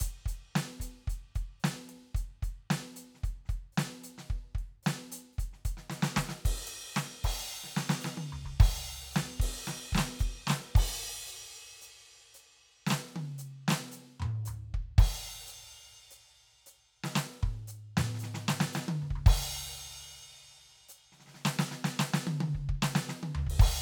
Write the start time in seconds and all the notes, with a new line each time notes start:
0.01 closed hi-hat, kick
0.26 closed hi-hat, kick
0.56 snare
0.81 closed hi-hat, kick
1.08 closed hi-hat, kick
1.36 closed hi-hat, kick
1.61 hi-hat pedal
1.65 snare
1.90 closed hi-hat
2.15 closed hi-hat, kick
2.43 closed hi-hat, kick
2.71 snare
2.97 closed hi-hat
3.15 snare
3.24 closed hi-hat, kick
3.46 kick, snare
3.50 closed hi-hat
3.73 hi-hat pedal
3.78 snare
4.04 closed hi-hat
4.19 snare
4.29 kick, closed hi-hat, hi-hat pedal
4.56 kick, closed hi-hat
4.84 snare, hi-hat pedal
5.13 closed hi-hat
5.33 hi-hat pedal
5.39 closed hi-hat, kick
5.54 snare
5.66 open hi-hat, kick
5.78 snare
5.91 snare, hi-hat pedal
6.03 snare
6.17 kick, snare
6.30 snare
6.46 kick, hi-hat pedal, crash
6.68 closed hi-hat
6.95 snare, hi-hat pedal
7.25 kick, crash
7.40 snare
7.45 hi-hat pedal
7.64 snare
7.77 snare
7.90 snare
8.01 hi-hat pedal
8.05 snare
8.18 high tom
8.33 floor tom
8.46 kick, floor tom
8.61 kick, hi-hat pedal, crash
9.13 snare, hi-hat pedal
9.41 kick, crash
9.66 closed hi-hat, snare, hi-hat pedal
9.93 kick, snare
9.98 snare
10.20 kick, hi-hat pedal
10.48 snare
10.50 snare
10.76 kick, crash
11.27 hi-hat pedal
11.82 hi-hat pedal
12.35 hi-hat pedal
12.87 snare, hi-hat pedal
12.91 snare
13.17 high tom
13.39 hi-hat pedal
13.69 snare
13.71 snare
13.92 hi-hat pedal
14.20 mid tom
14.23 mid tom
14.46 floor tom, hi-hat pedal
14.75 kick
14.99 kick, crash
15.04 floor tom, hi-hat pedal
15.48 hi-hat pedal
16.11 hi-hat pedal
16.67 hi-hat pedal
17.04 snare
17.16 snare, hi-hat pedal
17.43 kick, mid tom
17.68 hi-hat pedal
17.98 snare, mid tom
18.15 snare
18.20 hi-hat pedal
18.24 snare
18.35 snare
18.49 snare
18.61 snare
18.74 snare, hi-hat pedal
18.89 high tom
19.03 mid tom
19.11 kick
19.16 floor tom
19.27 kick, crash
20.90 hi-hat pedal
21.13 snare
21.20 snare
21.26 snare
21.28 snare
21.35 snare
21.40 snare
21.46 snare
21.60 snare
21.72 snare
21.85 snare
22.00 snare
22.14 snare
22.27 hi-hat pedal, high tom
22.41 high tom
22.55 kick
22.70 kick
22.75 kick
22.83 snare
22.96 snare
23.10 snare
23.24 high tom
23.36 floor tom
23.47 kick, crash
23.60 kick, crash